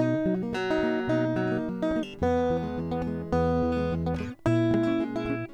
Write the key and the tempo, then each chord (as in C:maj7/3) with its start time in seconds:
G# minor, 107 BPM
0.00 B:maj7
2.21 E:(1,5,#11)
4.46 A#:hdim7